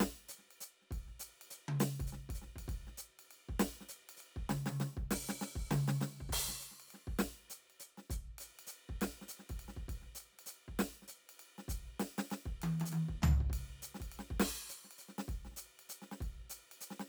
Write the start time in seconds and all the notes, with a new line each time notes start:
0.01 snare, ride
0.29 hi-hat pedal, ride
0.39 snare
0.45 snare
0.51 ride
0.61 hi-hat pedal, ride
0.82 snare
0.92 kick, ride
1.08 snare
1.20 hi-hat pedal, ride
1.42 ride
1.51 hi-hat pedal
1.69 mid tom
1.80 snare, hi-hat pedal
2.00 kick, ride
2.08 hi-hat pedal
2.13 snare
2.30 kick, ride
2.35 hi-hat pedal
2.42 snare
2.56 kick, ride
2.69 kick, ride
2.88 snare
2.98 hi-hat pedal, ride
3.20 ride
3.31 ride
3.49 kick
3.60 snare, ride
3.81 snare
3.89 hi-hat pedal, ride
4.10 ride
4.18 hi-hat pedal, ride
4.37 kick
4.50 snare, mid tom
4.67 snare, mid tom
4.81 snare, mid tom
4.98 kick
5.11 open hi-hat, snare
5.30 open hi-hat, snare
5.42 open hi-hat, snare
5.56 kick
5.71 snare, mid tom
5.89 snare, mid tom
6.01 snare, mid tom
6.21 kick
6.30 kick, crash
6.49 snare
6.61 hi-hat pedal, ride
6.72 snare
6.80 ride
6.88 hi-hat pedal, ride
6.95 snare
7.08 kick
7.20 snare, ride
7.51 hi-hat pedal, ride
7.71 ride
7.81 hi-hat pedal
7.86 ride
7.98 snare
8.11 kick, hi-hat pedal
8.39 hi-hat pedal, ride
8.60 ride
8.68 hi-hat pedal, ride
8.90 kick
9.02 snare, ride
9.22 snare
9.29 hi-hat pedal, ride
9.40 snare
9.50 kick, ride
9.69 snare
9.77 kick
9.89 kick, ride
10.03 snare
10.16 hi-hat pedal
10.21 ride
10.33 snare
10.40 ride
10.47 hi-hat pedal
10.51 ride
10.69 kick
10.80 snare, ride
11.03 snare
11.09 hi-hat pedal, ride
11.30 ride
11.40 ride
11.59 snare
11.69 kick, hi-hat pedal, ride
12.00 snare, ride
12.19 snare, ride
12.31 snare, ride
12.46 kick
12.63 high tom, ride
12.81 high tom, ride
12.86 hi-hat pedal
12.93 high tom, ride
13.09 kick
13.23 floor tom, mid tom
13.41 kick
13.51 kick, ride
13.83 hi-hat pedal, ride
13.95 snare
14.01 kick, ride
14.12 ride
14.20 snare
14.31 kick
14.40 snare, crash
14.70 hi-hat pedal, ride
14.85 snare
14.92 ride
14.99 hi-hat pedal, ride
15.09 snare
15.19 snare
15.29 kick, ride
15.46 snare
15.52 snare
15.57 hi-hat pedal, ride
15.80 ride
15.90 hi-hat pedal, ride
16.02 snare
16.12 snare
16.21 kick, ride
16.44 snare
16.50 hi-hat pedal, ride
16.72 ride
16.82 hi-hat pedal, ride
16.91 snare
17.00 snare